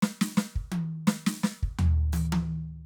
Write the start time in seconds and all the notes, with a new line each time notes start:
0.03 snare
0.22 snare
0.37 snare
0.56 kick
0.72 high tom
1.08 snare
1.27 snare
1.44 snare
1.63 kick
1.79 floor tom
2.13 hi-hat pedal, high tom
2.33 high tom